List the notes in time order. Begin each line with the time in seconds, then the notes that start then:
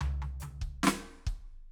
0.01 floor tom, high tom
0.22 floor tom, high tom
0.40 floor tom, hi-hat pedal, high tom
0.61 kick
0.83 snare
0.87 snare
1.27 kick